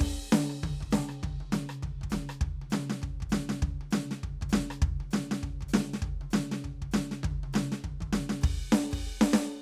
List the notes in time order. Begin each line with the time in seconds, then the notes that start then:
0.01 kick, crash
0.32 snare, hi-hat pedal, high tom
0.50 cross-stick
0.63 kick, high tom
0.81 kick, high tom
0.91 snare, hi-hat pedal, high tom
1.09 cross-stick
1.23 kick, high tom
1.41 high tom
1.52 snare, hi-hat pedal, high tom
1.69 cross-stick
1.83 kick, high tom
2.01 kick, high tom
2.10 snare, hi-hat pedal, high tom
2.29 cross-stick
2.41 kick, high tom
2.62 high tom
2.70 snare, hi-hat pedal, high tom
2.90 snare
3.02 kick, high tom
3.21 kick, high tom
3.30 snare, hi-hat pedal, high tom
3.49 snare
3.62 kick, high tom
3.81 high tom
3.91 snare, hi-hat pedal, high tom
4.11 snare
4.23 kick, high tom
4.42 kick, high tom
4.49 snare, hi-hat pedal
4.54 high tom
4.71 cross-stick
4.82 kick, high tom
5.00 high tom
5.11 snare, hi-hat pedal, high tom
5.31 snare
5.43 kick, high tom
5.61 kick, high tom
5.69 hi-hat pedal
5.74 snare, high tom
5.94 snare
6.02 kick, high tom
6.21 high tom
6.31 snare, hi-hat pedal, high tom
6.52 snare
6.64 kick, high tom
6.82 kick, high tom
6.92 snare, hi-hat pedal, high tom
7.11 snare
7.24 kick, high tom
7.44 high tom
7.53 snare, hi-hat pedal, high tom
7.72 snare
7.84 kick, high tom
8.01 kick, high tom
8.13 snare, hi-hat pedal, high tom
8.29 snare
8.42 kick, crash
8.72 snare, hi-hat pedal
8.92 kick, crash
9.21 snare
9.31 snare, hi-hat pedal